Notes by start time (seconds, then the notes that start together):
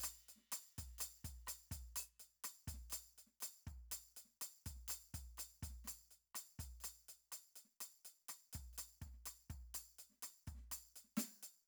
0.01 cross-stick, snare, percussion
0.04 percussion
0.29 percussion
0.36 snare
0.53 cross-stick, snare, percussion
0.79 kick, percussion
0.99 cross-stick, percussion
1.01 percussion
1.25 kick, percussion
1.47 cross-stick, percussion
1.49 percussion
1.72 kick, percussion
1.97 cross-stick, percussion
2.20 percussion
2.45 cross-stick, percussion
2.68 kick, percussion
2.74 snare
2.91 cross-stick, percussion
2.93 percussion
3.19 percussion
3.27 snare
3.41 cross-stick, percussion
3.43 percussion
3.68 kick, percussion
3.92 cross-stick, percussion
4.17 percussion
4.26 snare
4.28 snare
4.42 cross-stick, percussion
4.67 kick, percussion
4.76 snare
4.89 cross-stick, percussion
4.91 percussion
5.15 kick, percussion
5.38 cross-stick, percussion
5.40 percussion
5.63 kick, percussion
5.70 snare
5.85 cross-stick, snare, percussion
5.88 percussion
6.12 percussion
6.35 cross-stick, snare, percussion
6.60 kick, percussion
6.81 cross-stick, percussion
6.85 percussion
7.09 percussion
7.33 cross-stick, percussion
7.57 percussion
7.65 snare
7.81 cross-stick, percussion
8.06 percussion
8.29 cross-stick, percussion
8.54 kick, percussion
8.74 percussion
8.79 cross-stick, percussion
9.02 kick, snare, percussion
9.14 snare
9.27 cross-stick, percussion
9.51 kick, percussion
9.75 cross-stick, percussion
9.99 percussion
10.10 snare
10.12 snare
10.23 cross-stick, percussion
10.48 kick, percussion
10.55 snare
10.57 snare
10.72 cross-stick, percussion
10.97 percussion
11.05 snare
11.18 snare, percussion
11.20 percussion
11.44 percussion